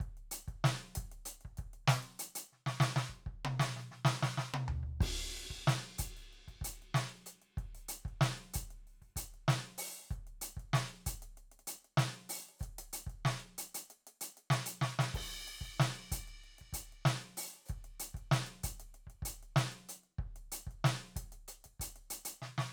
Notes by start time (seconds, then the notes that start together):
0.01 kick, closed hi-hat
0.18 closed hi-hat
0.32 closed hi-hat
0.49 kick, closed hi-hat
0.65 snare
0.79 closed hi-hat
0.96 kick, closed hi-hat
1.12 closed hi-hat
1.26 closed hi-hat
1.42 closed hi-hat
1.46 kick
1.58 kick, closed hi-hat
1.74 closed hi-hat
1.86 kick, snare
2.04 closed hi-hat
2.20 closed hi-hat
2.36 closed hi-hat
2.53 snare
2.67 snare
2.81 snare
2.97 snare
3.10 kick
3.27 kick
3.46 high tom
3.60 snare
3.77 snare
3.92 snare
4.06 snare
4.23 snare
4.38 snare
4.55 high tom
4.69 floor tom
4.84 kick
5.01 kick, ride
5.38 closed hi-hat
5.51 kick
5.55 closed hi-hat
5.68 snare
5.84 closed hi-hat
5.99 closed hi-hat, kick
6.18 open hi-hat
6.34 closed hi-hat
6.49 kick, open hi-hat
6.62 closed hi-hat, kick
6.83 closed hi-hat
6.95 snare
7.10 open hi-hat
7.27 closed hi-hat
7.43 closed hi-hat
7.58 kick, closed hi-hat
7.76 open hi-hat
7.89 closed hi-hat
8.06 kick, closed hi-hat
8.22 snare
8.38 closed hi-hat
8.54 closed hi-hat, kick
8.71 closed hi-hat
8.88 open hi-hat
9.03 kick, open hi-hat
9.17 closed hi-hat, kick
9.35 closed hi-hat
9.49 snare
9.64 closed hi-hat
9.79 open hi-hat
9.99 open hi-hat
10.11 kick, hi-hat pedal
10.28 closed hi-hat
10.42 closed hi-hat
10.58 kick, closed hi-hat
10.74 snare
10.90 closed hi-hat
11.07 closed hi-hat, kick
11.23 closed hi-hat
11.38 closed hi-hat
11.52 closed hi-hat
11.60 closed hi-hat
11.68 closed hi-hat
11.85 closed hi-hat
11.98 snare
12.15 closed hi-hat
12.30 open hi-hat
12.49 open hi-hat
12.60 kick, closed hi-hat, hi-hat pedal
12.79 closed hi-hat
12.94 closed hi-hat
13.07 kick, closed hi-hat
13.26 snare
13.41 closed hi-hat
13.59 closed hi-hat
13.75 closed hi-hat
13.91 closed hi-hat
14.08 closed hi-hat
14.22 closed hi-hat
14.38 closed hi-hat
14.51 snare
14.67 closed hi-hat
14.82 snare
15.00 snare
15.15 kick, crash
15.33 closed hi-hat
15.49 closed hi-hat
15.62 kick, closed hi-hat
15.81 snare
15.96 closed hi-hat
16.12 closed hi-hat, kick
16.28 closed hi-hat
16.44 closed hi-hat
16.59 kick, closed hi-hat
16.74 closed hi-hat, kick
16.93 closed hi-hat
17.06 snare
17.21 closed hi-hat
17.38 open hi-hat
17.54 open hi-hat
17.66 kick, closed hi-hat, hi-hat pedal
17.85 closed hi-hat
18.01 closed hi-hat
18.15 kick, closed hi-hat
18.32 snare
18.47 closed hi-hat
18.64 closed hi-hat, kick
18.81 closed hi-hat
18.95 closed hi-hat
19.08 kick, closed hi-hat
19.23 closed hi-hat, kick
19.44 closed hi-hat
19.57 snare
19.73 closed hi-hat
19.90 closed hi-hat
20.04 closed hi-hat
20.19 kick
20.37 open hi-hat
20.53 closed hi-hat
20.68 kick
20.72 closed hi-hat
20.85 snare
21.00 closed hi-hat
21.17 kick, closed hi-hat
21.33 open hi-hat
21.49 closed hi-hat
21.65 kick, closed hi-hat
21.80 closed hi-hat, kick
21.97 closed hi-hat
22.11 closed hi-hat
22.26 closed hi-hat
22.43 snare
22.59 snare